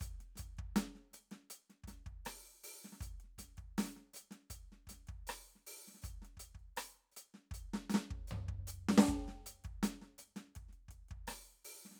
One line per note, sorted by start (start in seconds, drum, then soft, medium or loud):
0.01 closed hi-hat medium
0.01 kick soft
0.01 hi-hat pedal soft
0.20 snare soft
0.20 closed hi-hat soft
0.36 closed hi-hat medium
0.36 kick soft
0.36 snare soft
0.57 kick soft
0.57 closed hi-hat soft
0.76 closed hi-hat medium
0.76 snare medium
0.95 snare soft
1.14 closed hi-hat soft
1.14 hi-hat pedal medium
1.31 snare soft
1.31 closed hi-hat soft
1.50 closed hi-hat medium
1.70 snare soft
1.70 closed hi-hat soft
1.84 closed hi-hat soft
1.84 kick soft
1.84 snare soft
2.06 kick soft
2.06 closed hi-hat soft
2.26 open hi-hat medium
2.26 cross-stick medium
2.64 open hi-hat medium
2.85 snare soft
2.93 snare soft
3.00 closed hi-hat medium
3.00 kick soft
3.00 hi-hat pedal soft
3.20 snare soft
3.20 closed hi-hat soft
3.38 closed hi-hat medium
3.38 kick soft
3.38 snare soft
3.58 kick soft
3.58 closed hi-hat soft
3.78 open hi-hat medium
3.78 snare medium
3.84 snare soft
3.97 snare soft
4.14 closed hi-hat medium
4.14 hi-hat pedal medium
4.31 snare soft
4.31 closed hi-hat soft
4.50 closed hi-hat medium
4.50 kick soft
4.72 snare soft
4.87 closed hi-hat medium
4.87 kick soft
4.87 snare soft
5.08 kick soft
5.08 closed hi-hat soft
5.27 open hi-hat medium
5.27 cross-stick medium
5.56 snare soft
5.67 open hi-hat medium
5.88 snare soft
5.95 snare soft
5.99 snare soft
5.99 hi-hat pedal soft
6.04 closed hi-hat soft
6.04 kick soft
6.22 snare soft
6.22 closed hi-hat soft
6.37 closed hi-hat medium
6.37 kick soft
6.55 kick soft
6.60 closed hi-hat soft
6.77 open hi-hat medium
6.77 cross-stick medium
7.12 hi-hat pedal soft
7.17 closed hi-hat medium
7.34 snare soft
7.51 closed hi-hat soft
7.51 kick soft
7.74 snare soft
7.90 snare soft
7.90 hi-hat pedal medium
7.94 snare medium
8.11 kick soft
8.28 hi-hat pedal soft
8.28 floor tom soft
8.49 kick soft
8.68 hi-hat pedal medium
8.89 snare medium
8.98 snare loud
9.09 kick soft
9.28 snare soft
9.46 closed hi-hat medium
9.64 kick soft
9.64 closed hi-hat soft
9.83 closed hi-hat medium
9.83 snare medium
10.02 snare soft
10.19 closed hi-hat soft
10.19 hi-hat pedal medium
10.36 snare soft
10.36 closed hi-hat soft
10.56 kick soft
10.56 closed hi-hat soft
10.69 snare soft
10.73 closed hi-hat soft
10.89 kick soft
10.89 closed hi-hat soft
11.09 kick soft
11.09 closed hi-hat soft
11.28 open hi-hat medium
11.28 cross-stick medium
11.32 cross-stick soft
11.65 open hi-hat medium
11.85 snare soft
11.92 snare soft
11.96 snare soft